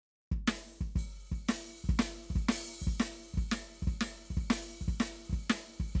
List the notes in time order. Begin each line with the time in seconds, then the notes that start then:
0.32 kick
0.47 open hi-hat, snare
0.81 kick
0.96 open hi-hat, kick
1.32 kick
1.48 open hi-hat, snare
1.84 kick
1.89 kick
1.99 open hi-hat, snare
2.30 kick
2.36 kick
2.49 open hi-hat, snare
2.82 kick
2.87 kick
3.00 open hi-hat, snare
3.34 kick
3.37 kick
3.51 open hi-hat, snare
3.57 open hi-hat
3.82 kick
3.87 kick
4.01 open hi-hat, snare
4.30 kick
4.37 kick
4.50 open hi-hat, snare
4.81 kick
4.88 kick
5.00 open hi-hat, snare
5.30 kick
5.33 kick
5.50 open hi-hat, snare
5.80 kick
5.95 kick, crash